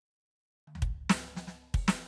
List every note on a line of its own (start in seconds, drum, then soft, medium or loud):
0.68 high tom soft
0.75 floor tom medium
0.82 kick medium
1.10 snare loud
1.37 snare medium
1.48 snare soft
1.74 open hi-hat medium
1.74 kick medium
1.88 snare loud
1.88 hi-hat pedal soft